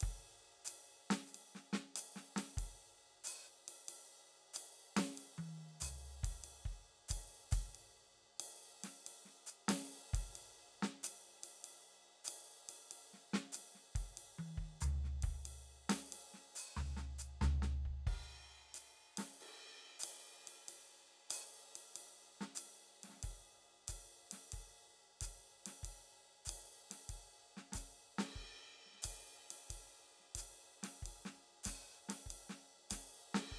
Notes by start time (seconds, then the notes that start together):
0.01 kick, ride
0.65 hi-hat pedal, ride
1.10 snare, ride
1.27 hi-hat pedal
1.35 ride
1.55 snare
1.73 snare
1.96 hi-hat pedal, ride
2.16 snare
2.36 snare, ride
2.57 kick, ride
3.24 hi-hat pedal, ride
3.68 ride
3.89 ride
4.54 hi-hat pedal, ride
4.97 snare, ride
5.18 ride
5.38 high tom
5.81 floor tom, hi-hat pedal, ride
6.24 kick, ride
6.44 ride
6.65 kick
7.09 kick, hi-hat pedal, ride
7.51 open hi-hat, kick, ride
7.75 ride
8.40 ride
8.84 snare, ride
9.07 ride
9.25 snare
9.47 hi-hat pedal
9.69 snare, ride
10.14 kick, ride
10.36 ride
10.83 snare
11.03 hi-hat pedal, ride
11.44 ride
11.65 ride
12.25 hi-hat pedal, ride
12.69 ride
12.91 ride
13.14 snare
13.34 snare
13.52 hi-hat pedal, ride
13.75 snare
13.95 kick, ride
14.17 ride
14.39 high tom
14.58 kick
14.81 floor tom, hi-hat pedal
15.05 snare
15.23 kick, ride
15.46 ride
15.90 snare, ride
16.13 ride
16.34 snare
16.56 hi-hat pedal
16.77 snare, floor tom
16.97 snare
17.19 hi-hat pedal
17.41 snare, floor tom
17.62 snare
17.85 kick
18.07 kick, crash
18.75 hi-hat pedal, ride
19.18 snare, ride
19.41 ride
20.00 hi-hat pedal
20.04 ride
20.48 ride
20.69 ride
21.30 hi-hat pedal, ride
21.76 ride
21.96 ride
22.41 snare
22.55 hi-hat pedal, ride
23.04 snare, ride
23.09 snare
23.13 snare
23.16 snare
23.21 kick, snare, ride
23.88 kick, hi-hat pedal, ride
24.31 snare, ride
24.52 kick, ride
25.21 kick, hi-hat pedal, ride
25.66 snare, ride
25.83 kick, ride
26.45 kick, hi-hat pedal
26.49 ride
26.91 snare, ride
27.09 kick, ride
27.57 snare
27.72 kick, snare, hi-hat pedal, ride
28.19 snare, ride
28.36 kick
28.86 snare
28.91 snare
28.94 snare
28.96 snare
29.02 kick, hi-hat pedal, ride
29.51 snare, ride
29.70 kick, ride
30.20 snare
30.35 kick, hi-hat pedal, ride
30.83 snare, ride
31.03 kick, ride
31.25 snare
31.64 kick, snare, hi-hat pedal, ride
32.09 snare, ride
32.26 kick
32.31 ride
32.50 snare
32.90 kick, snare, hi-hat pedal, ride
33.35 snare, ride
33.52 kick